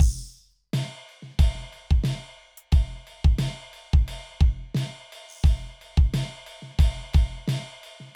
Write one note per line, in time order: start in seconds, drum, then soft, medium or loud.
0.01 kick loud
0.01 crash loud
0.52 hi-hat pedal soft
0.75 snare loud
0.75 hi-hat pedal soft
0.75 ride loud
1.11 ride bell soft
1.24 snare soft
1.41 kick loud
1.41 ride bell loud
1.57 snare soft
1.63 snare soft
1.74 ride bell medium
1.92 kick loud
1.92 snare soft
2.05 snare loud
2.05 ride bell loud
2.59 closed hi-hat medium
2.74 kick loud
2.74 ride bell medium
2.97 snare soft
3.09 ride bell medium
3.26 kick loud
3.40 snare loud
3.40 ride bell loud
3.75 ride bell medium
3.95 kick loud
4.10 ride loud
4.42 kick loud
4.76 snare loud
4.76 ride bell loud
5.14 ride medium
5.31 crash medium
5.45 kick loud
5.45 ride bell medium
5.83 ride medium
5.99 kick loud
6.15 snare loud
6.15 ride bell loud
6.48 ride medium
6.64 snare soft
6.80 kick loud
6.80 ride loud
6.96 snare soft
7.04 snare soft
7.15 kick loud
7.15 ride loud
7.49 snare loud
7.49 ride loud
7.85 ride medium
8.02 snare soft